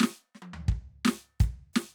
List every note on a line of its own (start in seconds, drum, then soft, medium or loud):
0.00 snare loud
0.03 snare loud
0.35 snare soft
0.42 high tom medium
0.54 floor tom medium
0.69 kick loud
1.05 snare loud
1.08 snare loud
1.40 open hi-hat medium
1.40 kick loud
1.74 snare loud
1.74 hi-hat pedal medium